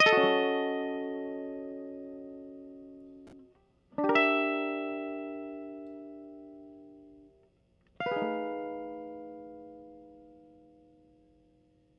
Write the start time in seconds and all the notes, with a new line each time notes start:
0.00 D#5
0.06 A4
0.12 F#4
0.17 C#4
3.98 D4
4.04 G4
4.09 A#4
4.15 E5
8.00 F5
8.06 B4
8.11 G#4
8.16 D#4